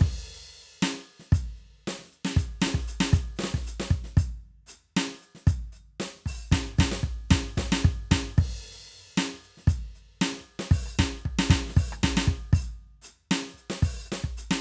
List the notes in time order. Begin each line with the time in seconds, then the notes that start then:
0.01 kick, crash
0.83 closed hi-hat, snare
0.94 snare
0.97 snare
1.09 closed hi-hat
1.20 snare
1.32 closed hi-hat, kick
1.57 hi-hat pedal
1.88 closed hi-hat, snare
1.99 snare
2.02 snare
2.04 snare
2.06 snare
2.12 closed hi-hat
2.25 snare
2.33 kick, snare
2.38 closed hi-hat
2.61 snare, hi-hat pedal
2.67 snare
2.75 kick, snare
2.82 snare
2.86 closed hi-hat, snare
3.01 snare
3.13 closed hi-hat, kick
3.20 snare
3.37 snare, hi-hat pedal
3.44 snare
3.54 kick, snare
3.61 snare
3.67 closed hi-hat, snare
3.80 snare
3.91 closed hi-hat, kick
4.04 snare
4.17 open hi-hat, kick
4.67 closed hi-hat, hi-hat pedal
4.97 closed hi-hat, snare
5.08 snare
5.12 snare
5.15 snare
5.18 closed hi-hat, snare
5.35 snare
5.47 closed hi-hat, kick
5.72 closed hi-hat, hi-hat pedal
6.00 closed hi-hat, snare
6.17 snare
6.25 open hi-hat, kick, hi-hat pedal
6.52 kick, snare, floor tom, hi-hat pedal
6.77 kick, snare, floor tom, hi-hat pedal
6.92 snare
7.01 kick, hi-hat pedal
7.30 kick, snare, floor tom, hi-hat pedal
7.56 kick, snare, floor tom, hi-hat pedal
7.72 snare
7.85 kick
8.12 kick, snare, floor tom
8.35 kick, hi-hat pedal
8.38 kick, crash
8.86 hi-hat pedal
9.18 closed hi-hat, snare
9.34 kick
9.43 closed hi-hat
9.58 snare
9.68 open hi-hat, kick
9.96 hi-hat pedal
10.22 closed hi-hat, snare
10.33 snare
10.36 snare
10.39 kick, snare
10.60 snare
10.71 open hi-hat, kick
10.86 cross-stick
10.93 hi-hat pedal
10.99 kick, snare
11.17 snare
11.26 kick
11.39 snare
11.50 kick, snare
11.66 snare
11.70 snare
11.77 open hi-hat, kick
11.92 cross-stick, hi-hat pedal
11.96 snare
11.99 snare
12.04 kick, snare
12.17 snare
12.28 kick
12.50 kick
12.53 open hi-hat, kick
13.02 closed hi-hat, hi-hat pedal
13.31 closed hi-hat, snare
13.43 snare
13.46 snare
13.49 snare
13.52 kick, snare
13.57 closed hi-hat
13.70 snare
13.83 open hi-hat, kick
14.07 hi-hat pedal
14.12 closed hi-hat, snare
14.24 kick
14.37 closed hi-hat
14.51 snare